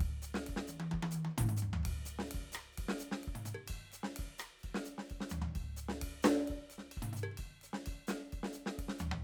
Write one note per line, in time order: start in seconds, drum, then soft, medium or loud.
0.01 kick medium
0.01 ride medium
0.23 hi-hat pedal medium
0.23 ride soft
0.35 snare medium
0.43 hi-hat pedal soft
0.43 ride medium
0.50 kick soft
0.57 snare medium
0.68 hi-hat pedal medium
0.68 high tom soft
0.80 high tom medium
0.92 kick soft
0.92 high tom medium
1.00 kick soft
1.00 high tom medium
1.12 hi-hat pedal loud
1.12 high tom soft
1.25 high tom medium
1.38 kick soft
1.38 mid tom loud
1.49 kick soft
1.49 mid tom medium
1.57 hi-hat pedal loud
1.63 floor tom medium
1.74 floor tom medium
1.84 kick soft
1.84 ride medium
1.84 floor tom soft
1.95 kick soft
2.06 hi-hat pedal loud
2.11 ride soft
2.19 snare medium
2.27 hi-hat pedal soft
2.32 kick soft
2.32 ride medium
2.41 kick soft
2.43 kick soft
2.53 cross-stick medium
2.53 hi-hat pedal loud
2.73 hi-hat pedal soft
2.78 kick soft
2.78 ride medium
2.89 snare medium
2.99 hi-hat pedal loud
2.99 ride soft
3.12 snare medium
3.21 hi-hat pedal soft
3.21 ride medium
3.28 kick soft
3.36 mid tom medium
3.46 hi-hat pedal medium
3.46 mid tom medium
3.55 percussion medium
3.67 kick soft
3.67 hi-hat pedal soft
3.67 ride bell medium
3.92 hi-hat pedal medium
3.92 ride soft
4.04 snare medium
4.13 hi-hat pedal soft
4.13 ride medium
4.20 kick soft
4.39 cross-stick medium
4.39 hi-hat pedal medium
4.59 hi-hat pedal soft
4.64 kick soft
4.64 ride bell soft
4.75 snare medium
4.85 hi-hat pedal medium
4.85 ride soft
4.99 snare medium
5.06 hi-hat pedal soft
5.10 kick soft
5.10 ride bell soft
5.21 snare medium
5.30 floor tom medium
5.30 hi-hat pedal medium
5.42 floor tom medium
5.56 kick soft
5.56 ride bell medium
5.62 kick soft
5.64 kick soft
5.77 hi-hat pedal medium
5.77 ride soft
5.89 snare medium
6.02 kick soft
6.02 ride medium
6.23 snare loud
6.23 hi-hat pedal medium
6.48 kick soft
6.48 ride medium
6.71 hi-hat pedal medium
6.71 ride soft
6.79 snare soft
6.92 ride bell medium
6.98 kick soft
7.03 mid tom medium
7.13 hi-hat pedal medium
7.13 mid tom medium
7.24 percussion loud
7.32 percussion soft
7.38 kick soft
7.38 ride bell medium
7.62 hi-hat pedal medium
7.62 ride soft
7.74 snare medium
7.87 kick soft
7.87 ride bell medium
8.08 snare medium
8.08 hi-hat pedal medium
8.28 hi-hat pedal soft
8.33 kick soft
8.33 ride bell soft
8.44 snare medium
8.53 hi-hat pedal medium
8.53 ride soft
8.67 snare medium
8.79 kick soft
8.79 ride medium
8.89 snare medium
8.99 floor tom medium
8.99 hi-hat pedal medium
9.12 floor tom medium